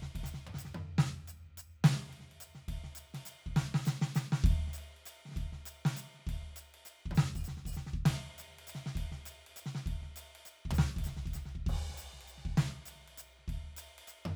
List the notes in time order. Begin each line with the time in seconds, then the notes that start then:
0.03 snare
0.16 kick, ride
0.24 snare, percussion
0.35 snare
0.47 floor tom
0.55 snare
0.59 percussion
0.66 snare
0.75 mid tom
0.99 snare
1.28 percussion
1.58 percussion
1.85 snare, ride
2.10 snare, ride
2.21 snare
2.25 snare
2.32 ride
2.41 ride, percussion
2.56 snare
2.69 kick, ride
2.84 snare
2.96 ride, percussion
3.15 snare, ride
3.26 ride, percussion
3.47 kick
3.57 snare, ride
3.75 snare
3.86 snare, percussion
4.02 snare
4.16 snare, percussion
4.33 snare
4.45 kick, ride
4.68 snare
4.74 percussion
4.79 ride
4.97 ride
5.06 ride, percussion
5.26 snare
5.29 snare
5.32 snare
5.35 kick, snare, ride
5.53 snare
5.66 ride, percussion
5.86 snare, ride
5.97 ride, percussion
6.15 snare
6.20 snare
6.27 kick, ride
6.57 ride, percussion
6.75 ride
6.86 ride, percussion
7.06 kick
7.12 mid tom
7.16 snare, percussion
7.36 kick, percussion
7.45 snare, percussion
7.58 snare
7.66 kick, percussion
7.74 snare, percussion
7.87 snare
7.94 kick
8.06 snare, ride
8.39 ride, percussion
8.59 ride
8.68 ride, percussion
8.76 snare
8.87 snare
8.96 kick, ride
9.12 snare
9.26 ride, percussion
9.47 ride
9.57 ride, percussion
9.67 snare
9.76 snare
9.87 kick, ride
10.04 snare
10.17 ride, percussion
10.36 ride
10.46 ride, percussion
10.66 kick
10.71 floor tom, percussion
10.79 snare
10.97 kick, ride
11.05 snare, percussion
11.26 kick, ride bell
11.34 snare, percussion
11.46 snare
11.56 kick
11.67 kick, crash
11.90 snare
11.98 percussion
12.03 ride
12.14 snare
12.22 ride
12.28 percussion
12.38 snare
12.46 kick
12.58 snare, ride
12.86 ride, percussion
12.96 snare
13.02 snare
13.08 ride
13.18 ride, percussion
13.39 snare
13.49 kick, ride
13.65 snare
13.77 ride, percussion
13.99 ride
14.08 percussion
14.26 mid tom